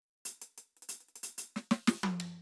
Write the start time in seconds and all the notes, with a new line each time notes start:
0.25 closed hi-hat
0.42 closed hi-hat
0.58 closed hi-hat
0.77 closed hi-hat
0.82 closed hi-hat
0.89 closed hi-hat
1.01 closed hi-hat
1.09 closed hi-hat
1.16 closed hi-hat
1.23 closed hi-hat
1.38 closed hi-hat
1.56 snare
1.71 snare
1.87 snare
2.03 high tom
2.20 floor tom